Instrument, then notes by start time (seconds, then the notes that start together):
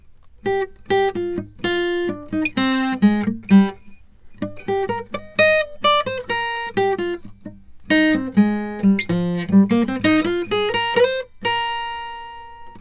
acoustic guitar
0.47 G4
0.91 G4
1.16 F4
1.65 F4
2.10 D4
2.34 D#4
2.58 C4
3.03 G#3
3.28 A#3
3.52 G3
4.43 D4
4.70 G4
4.90 A#4
5.15 D#5
5.39 D#5
5.61 D5
5.85 D5
6.08 C5
6.31 A#4
6.78 G4
7.00 F4
7.91 D#4
8.16 C4
8.38 G#3
8.85 G3
9.10 F3
9.54 G3
9.71 A#3
9.89 C4
10.05 D#4
10.26 F4
10.52 G#4
10.76 A#4
10.98 C5
11.46 A#4